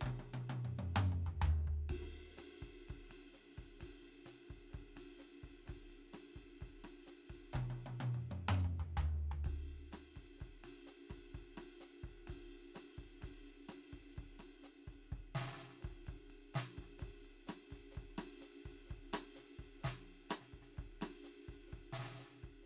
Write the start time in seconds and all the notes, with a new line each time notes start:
0.01 kick, high tom
0.06 kick, high tom
0.19 high tom
0.33 high tom
0.49 high tom
0.64 mid tom
0.79 mid tom
0.96 mid tom
1.12 floor tom
1.26 floor tom
1.41 floor tom
1.67 kick
1.73 kick
1.89 kick, ride
2.02 cross-stick
2.37 cross-stick, hi-hat pedal, ride
2.62 kick, ride
2.67 kick
2.88 kick, ride
2.95 kick
3.09 snare, ride
3.33 hi-hat pedal, ride
3.57 kick, ride
3.63 kick
3.79 kick, snare, hi-hat pedal, ride
3.87 kick
4.02 ride
4.25 snare, hi-hat pedal, ride
4.49 kick, ride
4.55 kick
4.70 hi-hat pedal, ride
4.74 kick
4.80 kick
4.96 snare, ride
5.19 hi-hat pedal, ride
5.43 kick, ride
5.48 kick
5.65 snare, hi-hat pedal, ride
5.69 kick
5.75 kick
5.90 ride
6.13 cross-stick, snare, hi-hat pedal, ride
6.36 kick, ride
6.61 kick, ride
6.67 kick
6.84 cross-stick, ride
7.06 hi-hat pedal, ride
7.29 kick, ride
7.35 kick
7.53 kick, hi-hat pedal, high tom
7.55 high tom
7.61 kick
7.70 hi-hat pedal, high tom
7.86 high tom
8.00 hi-hat pedal, high tom
8.14 mid tom
8.31 mid tom
8.48 mid tom
8.54 hi-hat pedal, mid tom
8.64 floor tom
8.79 floor tom, hi-hat pedal
8.97 floor tom
9.04 hi-hat pedal
9.31 floor tom
9.44 kick, ride
9.57 kick
9.92 cross-stick, hi-hat pedal, ride
10.16 kick, ride
10.21 kick
10.37 kick, hi-hat pedal, ride
10.47 kick
10.63 snare, ride
10.86 hi-hat pedal, ride
11.08 kick, cross-stick, hi-hat pedal, ride
11.15 kick
11.34 kick, ride
11.41 snare
11.57 cross-stick, snare, ride
11.80 hi-hat pedal
12.03 kick
12.09 kick
12.15 snare
12.27 kick, snare, ride
12.35 kick
12.75 cross-stick, snare, hi-hat pedal, ride
12.98 kick
13.03 kick
13.21 kick, snare, ride
13.29 kick
13.68 cross-stick, snare, hi-hat pedal, ride
13.92 kick, ride
13.98 kick
14.16 kick, ride
14.23 kick
14.39 cross-stick, ride
14.63 hi-hat pedal
14.87 kick, ride
14.92 kick
15.12 kick, ride
15.18 kick
15.35 snare, hi-hat pedal, ride
15.41 snare
15.47 snare
15.52 snare
15.58 snare, ride
15.63 snare
15.68 snare
15.74 snare
15.78 snare, hi-hat pedal
15.82 kick, snare, ride
15.89 kick, snare
15.94 snare
16.07 kick, ride
16.14 kick
16.30 ride
16.54 snare, hi-hat pedal, ride
16.77 kick, ride
16.82 kick, snare
16.87 snare
16.98 kick, hi-hat pedal, ride
17.08 kick
17.25 ride
17.47 cross-stick, hi-hat pedal, ride
17.70 kick, snare, ride
17.77 kick, snare
17.81 snare
17.91 hi-hat pedal, ride
17.97 kick
18.02 kick
18.18 cross-stick, ride
18.41 hi-hat pedal, ride
18.65 kick, ride
18.70 kick
18.86 hi-hat pedal, ride
18.90 kick
18.96 kick
19.13 cross-stick, ride
19.35 snare, hi-hat pedal, ride
19.44 snare
19.59 kick, ride
19.64 kick
19.80 snare, hi-hat pedal, ride
19.85 kick
19.91 kick
20.05 ride
20.29 cross-stick, hi-hat pedal, ride
20.41 snare
20.52 kick, ride
20.58 kick, snare
20.68 snare
20.74 hi-hat pedal, ride
20.78 kick
20.84 kick
21.01 cross-stick, ride
21.24 hi-hat pedal, ride
21.30 snare
21.48 kick, ride
21.53 kick
21.67 hi-hat pedal
21.72 kick, ride
21.78 kick
21.92 snare
21.97 snare, ride
22.04 snare
22.09 snare
22.14 snare
22.19 snare, hi-hat pedal, ride
22.29 snare
22.32 snare
22.36 snare
22.39 snare
22.41 kick, snare, ride
22.46 kick, snare
22.51 snare
22.62 hi-hat pedal